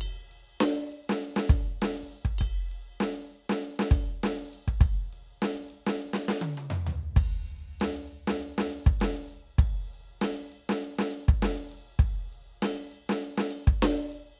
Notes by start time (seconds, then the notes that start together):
0.01 ride bell
0.31 ride
0.60 snare, ride bell
0.92 ride
1.09 snare
1.36 snare
1.49 kick, ride bell
1.82 snare, ride
2.03 kick
2.11 ride bell
2.25 kick
2.39 kick, ride bell
2.71 ride
3.00 snare, ride bell
3.32 ride
3.50 snare
3.79 snare
3.91 kick, ride bell
4.23 snare, ride
4.53 ride bell
4.68 kick
4.81 kick, ride bell
5.13 ride
5.42 snare, ride bell
5.70 ride
5.87 snare
6.13 snare
6.28 snare
6.42 high tom
6.57 high tom
6.70 mid tom
6.87 floor tom
7.16 kick, ride bell, crash
7.46 ride
7.80 snare, ride bell
8.10 ride
8.28 snare
8.58 snare
8.70 ride
8.86 kick
9.01 snare, ride
9.30 ride bell
9.58 kick, ride
9.94 ride
10.21 snare, ride bell
10.52 ride
10.69 snare
10.99 snare
11.11 ride bell
11.28 kick
11.42 snare, ride
11.72 ride
11.99 kick, ride
12.33 ride
12.62 snare, ride bell
12.92 ride bell
13.09 snare
13.38 snare
13.51 ride bell
13.67 kick
13.82 snare, ride bell
14.12 ride